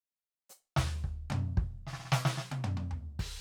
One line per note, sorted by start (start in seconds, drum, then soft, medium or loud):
0.49 hi-hat pedal loud
0.76 snare loud
0.76 floor tom loud
1.04 kick medium
1.30 mid tom loud
1.30 high tom loud
1.57 kick loud
1.57 snare soft
1.87 snare medium
1.93 snare medium
1.99 snare medium
2.05 snare medium
2.10 snare soft
2.12 snare loud
2.25 snare loud
2.37 snare medium
2.51 high tom loud
2.64 mid tom loud
2.77 mid tom loud
2.91 floor tom medium
3.19 kick medium
3.19 crash loud